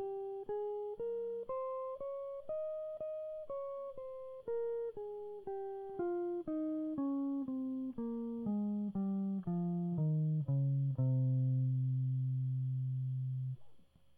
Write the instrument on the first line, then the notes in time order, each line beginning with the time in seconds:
electric guitar
0.00 G4
0.50 G#4
1.00 A#4
1.50 C5
2.01 C#5
2.49 D#5
3.01 D#5
3.50 C#5
4.48 A#4
4.97 G#4
5.47 G4
6.00 F4
6.48 D#4
6.99 C#4
7.49 C4
7.99 A#3
8.47 G#3
8.96 G3
9.48 F3
9.99 D#3
10.50 C#3
11.00 C3